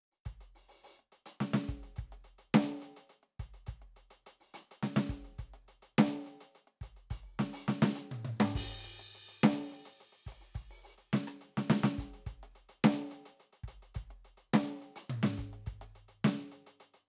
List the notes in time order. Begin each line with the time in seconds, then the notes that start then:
0.12 open hi-hat
0.25 closed hi-hat, kick
0.41 closed hi-hat
0.55 open hi-hat
0.68 open hi-hat
0.84 open hi-hat
0.99 closed hi-hat
1.12 closed hi-hat
1.26 closed hi-hat
1.40 snare
1.53 snare
1.63 hi-hat pedal
1.68 closed hi-hat, kick
1.83 closed hi-hat
1.96 closed hi-hat, kick
2.12 closed hi-hat
2.24 closed hi-hat
2.38 closed hi-hat
2.54 snare
2.69 closed hi-hat
2.82 closed hi-hat
2.96 closed hi-hat
3.09 closed hi-hat
3.23 closed hi-hat
3.39 closed hi-hat, kick
3.54 closed hi-hat
3.67 closed hi-hat, kick
3.82 closed hi-hat
3.96 closed hi-hat
4.10 closed hi-hat
4.26 closed hi-hat
4.40 open hi-hat
4.54 closed hi-hat
4.71 closed hi-hat
4.83 snare
4.96 snare
5.09 closed hi-hat, kick
5.24 closed hi-hat
5.38 closed hi-hat, kick
5.54 closed hi-hat
5.68 closed hi-hat
5.82 closed hi-hat
5.98 snare
6.13 closed hi-hat
6.26 closed hi-hat
6.41 closed hi-hat
6.55 closed hi-hat
6.67 closed hi-hat
6.81 closed hi-hat, kick
6.96 closed hi-hat
7.10 open hi-hat, kick
7.23 open hi-hat
7.39 snare
7.53 open hi-hat
7.68 snare
7.82 snare
7.95 closed hi-hat
8.11 high tom
8.25 high tom
8.40 snare
8.55 kick, crash
8.61 kick
8.64 kick
8.72 closed hi-hat
8.84 closed hi-hat, kick
8.99 closed hi-hat
9.14 closed hi-hat
9.28 closed hi-hat
9.43 snare
9.58 closed hi-hat
9.71 closed hi-hat
9.85 closed hi-hat
10.00 closed hi-hat
10.12 closed hi-hat
10.26 closed hi-hat, kick
10.32 open hi-hat
10.41 open hi-hat
10.55 open hi-hat, kick
10.71 open hi-hat
10.84 open hi-hat
10.98 closed hi-hat
11.13 snare
11.27 cross-stick
11.41 closed hi-hat
11.57 snare
11.70 snare
11.83 snare
11.89 hi-hat pedal
11.98 closed hi-hat, kick
12.03 kick
12.13 closed hi-hat
12.26 closed hi-hat, kick
12.43 closed hi-hat
12.55 closed hi-hat
12.69 closed hi-hat
12.84 snare
12.98 closed hi-hat
13.11 closed hi-hat
13.25 closed hi-hat
13.40 closed hi-hat
13.53 closed hi-hat
13.63 kick
13.68 closed hi-hat
13.82 closed hi-hat
13.94 closed hi-hat, kick
14.10 closed hi-hat
14.25 closed hi-hat
14.37 closed hi-hat
14.53 snare
14.68 closed hi-hat
14.82 closed hi-hat
14.96 closed hi-hat
15.10 high tom
15.23 snare
15.32 hi-hat pedal
15.37 closed hi-hat, kick
15.53 closed hi-hat
15.66 closed hi-hat, kick
15.81 closed hi-hat
15.95 closed hi-hat
16.08 closed hi-hat
16.24 snare
16.39 closed hi-hat
16.52 closed hi-hat
16.67 closed hi-hat
16.80 closed hi-hat
16.94 closed hi-hat